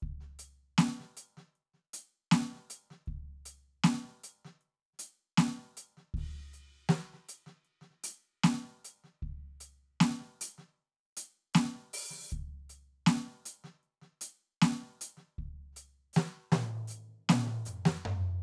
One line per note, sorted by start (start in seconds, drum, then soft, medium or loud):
0.01 kick medium
0.01 closed hi-hat soft
0.22 snare soft
0.32 snare soft
0.40 closed hi-hat medium
0.79 snare loud
1.01 snare soft
1.18 closed hi-hat medium
1.38 snare soft
1.56 closed hi-hat soft
1.75 snare soft
1.95 closed hi-hat loud
2.33 snare loud
2.56 snare soft
2.71 closed hi-hat medium
2.92 snare soft
3.07 kick medium
3.07 closed hi-hat soft
3.47 closed hi-hat medium
3.85 snare loud
4.09 snare soft
4.25 closed hi-hat medium
4.46 snare soft
4.62 closed hi-hat soft
4.94 snare soft
5.00 closed hi-hat loud
5.39 snare loud
5.78 closed hi-hat medium
5.98 snare soft
6.15 kick medium
6.15 crash soft
6.40 snare soft
6.54 closed hi-hat soft
6.90 snare loud
7.15 snare soft
7.30 closed hi-hat medium
7.47 snare soft
7.66 closed hi-hat soft
7.82 snare soft
7.91 snare soft
8.05 closed hi-hat loud
8.45 snare loud
8.65 snare soft
8.86 closed hi-hat medium
9.05 snare soft
9.23 kick medium
9.62 closed hi-hat medium
10.01 snare loud
10.21 snare soft
10.42 closed hi-hat loud
10.59 snare soft
11.18 closed hi-hat loud
11.55 snare loud
11.55 hi-hat pedal medium
11.77 snare soft
11.87 snare soft
11.94 open hi-hat loud
12.11 snare soft
12.16 snare soft
12.19 snare soft
12.24 snare soft
12.30 kick medium
12.30 hi-hat pedal medium
12.35 snare soft
12.71 closed hi-hat medium
13.08 snare loud
13.47 closed hi-hat medium
13.65 snare soft
13.84 closed hi-hat soft
14.03 snare soft
14.22 closed hi-hat loud
14.63 snare loud
14.81 snare soft
15.02 closed hi-hat loud
15.18 snare soft
15.39 kick medium
15.74 open hi-hat medium
15.74 snare soft
16.14 snare loud
16.14 hi-hat pedal medium
16.53 snare loud
16.53 mid tom loud
16.89 closed hi-hat medium
16.89 hi-hat pedal medium
17.30 snare loud
17.30 mid tom loud
17.47 snare soft
17.67 floor tom medium
17.67 hi-hat pedal medium
17.87 snare loud
18.06 floor tom loud